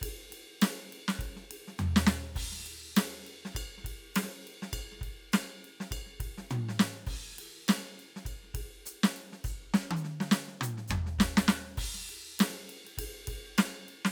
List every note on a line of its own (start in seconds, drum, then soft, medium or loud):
0.01 kick soft
0.01 hi-hat pedal soft
0.01 ride loud
0.08 kick soft
0.30 snare soft
0.30 ride medium
0.62 snare loud
0.62 hi-hat pedal medium
0.62 ride loud
0.89 hi-hat pedal soft
0.89 ride medium
1.09 snare loud
1.19 kick soft
1.19 ride medium
1.26 kick soft
1.29 kick soft
1.37 snare soft
1.51 ride medium
1.68 snare soft
1.79 floor tom loud
1.79 hi-hat pedal medium
1.97 snare loud
2.07 snare loud
2.27 snare soft
2.35 kick soft
2.35 hi-hat pedal soft
2.35 crash medium
2.42 kick soft
2.46 kick soft
2.52 snare soft
2.60 snare soft
2.67 ride medium
2.96 snare loud
2.96 hi-hat pedal medium
2.96 ride loud
3.27 ride medium
3.46 snare medium
3.54 kick soft
3.54 hi-hat pedal soft
3.54 ride bell loud
3.61 kick soft
3.64 kick soft
3.78 snare soft
3.85 kick soft
3.85 ride medium
3.93 kick soft
4.15 snare loud
4.15 hi-hat pedal medium
4.15 ride loud
4.24 snare soft
4.48 ride medium
4.63 snare medium
4.73 kick soft
4.73 ride bell loud
4.79 kick soft
4.82 kick soft
4.92 snare soft
4.99 kick soft
4.99 snare soft
5.04 snare soft
5.04 ride medium
5.08 kick soft
5.33 snare loud
5.33 hi-hat pedal medium
5.33 ride bell loud
5.43 snare soft
5.65 ride soft
5.81 snare medium
5.92 kick soft
5.92 snare soft
5.92 ride bell loud
5.97 kick soft
6.07 snare soft
6.20 kick soft
6.20 ride medium
6.27 kick soft
6.38 snare medium
6.50 hi-hat pedal medium
6.50 mid tom loud
6.69 snare medium
6.80 snare loud
7.07 kick medium
7.07 crash medium
7.14 kick soft
7.17 kick soft
7.31 snare soft
7.35 snare soft
7.39 ride medium
7.69 snare loud
7.69 hi-hat pedal medium
7.69 ride bell loud
7.78 snare soft
8.00 ride soft
8.17 snare medium
8.26 kick soft
8.26 ride bell medium
8.34 kick soft
8.44 snare soft
8.55 kick soft
8.55 ride loud
8.62 kick soft
8.86 hi-hat pedal loud
8.86 ride medium
9.04 snare loud
9.17 ride medium
9.33 snare soft
9.45 kick medium
9.45 hi-hat pedal medium
9.45 ride bell medium
9.61 snare soft
9.68 kick soft
9.74 snare loud
9.91 high tom loud
9.97 hi-hat pedal medium
10.05 snare soft
10.21 snare medium
10.32 snare loud
10.32 hi-hat pedal medium
10.48 snare soft
10.62 hi-hat pedal loud
10.62 mid tom loud
10.78 snare soft
10.88 kick soft
10.88 hi-hat pedal loud
10.88 floor tom loud
11.07 snare soft
11.19 kick medium
11.19 snare loud
11.19 hi-hat pedal medium
11.38 snare loud
11.49 snare loud
11.67 snare soft
11.78 kick medium
11.78 crash loud
11.88 kick soft
11.95 snare soft
12.01 snare soft
12.06 snare soft
12.06 ride medium
12.39 snare loud
12.39 hi-hat pedal medium
12.39 ride loud
12.50 snare soft
12.70 ride medium
12.85 snare soft
12.85 ride medium
12.91 snare soft
12.97 kick soft
12.97 hi-hat pedal soft
12.97 ride loud
13.28 kick soft
13.28 ride loud
13.37 kick soft
13.58 snare loud
13.58 hi-hat pedal soft
13.58 ride bell loud
13.66 snare soft
13.89 ride medium
14.05 snare loud